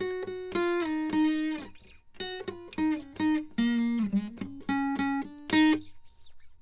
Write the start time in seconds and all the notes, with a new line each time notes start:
0.02 F#4
0.24 F#4
0.57 F4
0.83 D#4
1.15 D#4
2.21 F#4
2.49 F4
2.80 D#4
2.93 D4
3.21 D#4
3.60 A#3
4.15 G#3
4.29 A#3
4.43 C#4
4.70 C#4
5.01 C#4
5.24 D4
5.54 D#4